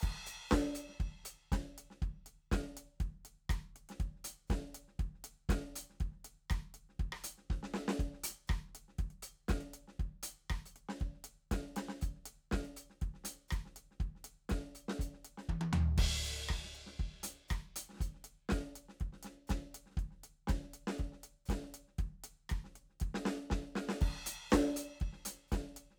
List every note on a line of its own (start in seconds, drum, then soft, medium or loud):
0.01 kick medium
0.01 hi-hat pedal medium
0.01 crash medium
0.26 open hi-hat medium
0.26 kick soft
0.48 kick medium
0.48 snare medium
0.48 closed hi-hat soft
0.48 hi-hat pedal soft
0.64 snare soft
0.75 closed hi-hat medium
0.88 snare soft
1.00 kick medium
1.00 closed hi-hat soft
1.23 closed hi-hat medium
1.23 snare soft
1.52 kick medium
1.52 snare medium
1.52 closed hi-hat medium
1.78 closed hi-hat medium
1.90 snare soft
2.02 kick medium
2.02 closed hi-hat soft
2.26 closed hi-hat medium
2.51 kick medium
2.51 snare medium
2.51 closed hi-hat medium
2.77 closed hi-hat medium
3.00 kick medium
3.00 closed hi-hat soft
3.25 closed hi-hat medium
3.49 kick medium
3.49 cross-stick medium
3.49 closed hi-hat medium
3.76 closed hi-hat soft
3.89 snare soft
3.89 closed hi-hat soft
4.00 kick medium
4.00 closed hi-hat soft
4.16 snare soft
4.24 open hi-hat medium
4.47 kick medium
4.47 snare medium
4.47 closed hi-hat soft
4.47 hi-hat pedal soft
4.74 closed hi-hat medium
4.88 snare soft
4.99 kick medium
4.99 closed hi-hat soft
5.14 snare soft
5.24 closed hi-hat medium
5.49 kick medium
5.49 snare medium
5.49 closed hi-hat medium
5.75 closed hi-hat medium
5.89 snare soft
5.93 snare soft
6.00 kick medium
6.00 closed hi-hat soft
6.12 snare soft
6.24 closed hi-hat medium
6.50 kick medium
6.50 cross-stick medium
6.50 closed hi-hat medium
6.74 closed hi-hat medium
6.89 snare soft
6.99 kick medium
6.99 closed hi-hat soft
7.12 cross-stick medium
7.17 cross-stick soft
7.24 closed hi-hat loud
7.38 snare soft
7.50 kick medium
7.50 snare soft
7.63 snare medium
7.74 snare medium
7.88 snare loud
7.99 kick medium
7.99 closed hi-hat soft
8.13 snare soft
8.23 open hi-hat loud
8.47 kick medium
8.47 cross-stick medium
8.47 closed hi-hat soft
8.47 hi-hat pedal soft
8.67 snare soft
8.75 closed hi-hat medium
8.88 snare soft
8.98 kick medium
8.98 closed hi-hat soft
9.10 closed hi-hat soft
9.22 open hi-hat medium
9.48 kick medium
9.48 snare medium
9.48 closed hi-hat medium
9.61 closed hi-hat soft
9.73 closed hi-hat medium
9.88 snare soft
9.99 kick medium
9.99 closed hi-hat soft
10.23 closed hi-hat loud
10.50 kick medium
10.50 cross-stick medium
10.50 closed hi-hat soft
10.65 closed hi-hat soft
10.76 closed hi-hat soft
10.89 snare medium
11.00 kick medium
11.00 closed hi-hat soft
11.14 snare soft
11.24 closed hi-hat medium
11.51 kick medium
11.51 snare medium
11.51 closed hi-hat medium
11.76 snare medium
11.76 closed hi-hat medium
11.88 snare medium
12.01 closed hi-hat soft
12.01 kick medium
12.15 snare soft
12.25 closed hi-hat medium
12.51 kick medium
12.51 snare medium
12.51 closed hi-hat soft
12.65 closed hi-hat soft
12.76 closed hi-hat medium
12.90 snare soft
13.01 kick medium
13.01 closed hi-hat soft
13.14 snare soft
13.24 open hi-hat loud
13.24 snare soft
13.48 kick medium
13.48 cross-stick medium
13.48 closed hi-hat medium
13.48 hi-hat pedal soft
13.65 snare soft
13.76 closed hi-hat medium
13.91 snare soft
14.00 kick medium
14.00 closed hi-hat soft
14.15 snare soft
14.24 closed hi-hat medium
14.49 kick medium
14.49 snare medium
14.49 closed hi-hat medium
14.66 snare soft
14.75 closed hi-hat medium
14.88 snare medium
14.99 closed hi-hat soft
14.99 kick medium
15.13 snare soft
15.24 closed hi-hat medium
15.37 snare soft
15.49 kick medium
15.49 high tom medium
15.61 high tom loud
15.73 floor tom loud
15.97 kick medium
15.97 ride loud
16.22 closed hi-hat soft
16.22 snare soft
16.49 kick medium
16.49 cross-stick medium
16.64 snare soft
16.75 closed hi-hat soft
16.86 snare soft
16.98 closed hi-hat soft
16.98 kick medium
17.13 cross-stick soft
17.23 open hi-hat loud
17.23 snare soft
17.48 kick medium
17.48 cross-stick medium
17.48 closed hi-hat medium
17.48 hi-hat pedal soft
17.76 closed hi-hat loud
17.89 snare soft
17.93 snare soft
17.96 snare soft
17.98 closed hi-hat soft
17.98 kick medium
17.98 snare soft
18.14 snare soft
18.24 closed hi-hat medium
18.49 closed hi-hat soft
18.49 kick medium
18.49 snare medium
18.75 closed hi-hat medium
18.88 snare soft
19.00 kick medium
19.00 closed hi-hat soft
19.12 snare soft
19.23 snare soft
19.23 open hi-hat medium
19.47 kick medium
19.47 snare medium
19.47 closed hi-hat medium
19.47 hi-hat pedal soft
19.74 closed hi-hat medium
19.86 snare soft
19.90 snare soft
19.97 kick medium
19.97 closed hi-hat soft
20.11 snare soft
20.16 snare soft
20.23 kick soft
20.23 closed hi-hat medium
20.47 kick medium
20.47 snare medium
20.47 closed hi-hat medium
20.62 snare soft
20.73 closed hi-hat medium
20.87 snare medium
20.98 kick medium
20.98 closed hi-hat soft
21.12 snare soft
21.23 open hi-hat medium
21.45 kick medium
21.45 hi-hat pedal soft
21.50 snare medium
21.50 closed hi-hat medium
21.62 snare soft
21.74 closed hi-hat medium
21.88 snare soft
21.98 kick medium
21.98 closed hi-hat soft
22.24 closed hi-hat medium
22.49 kick medium
22.49 cross-stick medium
22.49 closed hi-hat medium
22.64 snare soft
22.75 closed hi-hat soft
22.89 snare soft
23.00 kick medium
23.00 closed hi-hat medium
23.14 snare medium
23.25 snare loud
23.50 kick medium
23.50 snare medium
23.61 snare soft
23.75 snare medium
23.89 snare medium
24.01 kick medium
24.01 crash medium
24.14 snare soft
24.26 open hi-hat loud
24.50 kick medium
24.50 snare loud
24.50 closed hi-hat soft
24.50 hi-hat pedal soft
24.66 snare soft
24.76 closed hi-hat medium
24.88 snare soft
25.00 kick medium
25.00 closed hi-hat soft
25.13 snare soft
25.25 open hi-hat loud
25.25 snare soft
25.48 snare medium
25.48 hi-hat pedal soft
25.52 kick medium
25.52 closed hi-hat medium
25.76 closed hi-hat medium
25.90 snare soft